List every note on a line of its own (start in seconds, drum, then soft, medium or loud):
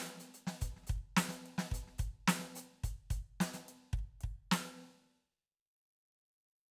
0.01 snare soft
0.01 hi-hat pedal medium
0.06 closed hi-hat soft
0.20 closed hi-hat medium
0.20 snare soft
0.34 closed hi-hat medium
0.47 snare medium
0.61 closed hi-hat medium
0.61 kick soft
0.67 kick soft
0.76 snare soft
0.83 closed hi-hat medium
0.83 snare soft
0.89 kick soft
0.95 kick soft
0.98 kick soft
1.17 closed hi-hat medium
1.17 snare loud
1.28 closed hi-hat soft
1.28 snare soft
1.46 closed hi-hat soft
1.58 snare medium
1.71 closed hi-hat medium
1.71 kick soft
1.87 snare soft
1.98 closed hi-hat medium
1.98 kick soft
2.07 kick soft
2.28 closed hi-hat loud
2.28 snare loud
2.39 snare soft
2.55 open hi-hat medium
2.55 hi-hat pedal medium
2.84 closed hi-hat medium
2.84 kick soft
3.10 closed hi-hat medium
3.10 kick soft
3.16 kick soft
3.19 kick soft
3.40 closed hi-hat medium
3.40 snare medium
3.53 closed hi-hat medium
3.53 snare soft
3.68 closed hi-hat medium
3.93 kick soft
3.97 kick soft
3.97 closed hi-hat soft
4.21 kick soft
4.21 closed hi-hat soft
4.51 closed hi-hat medium
4.51 snare loud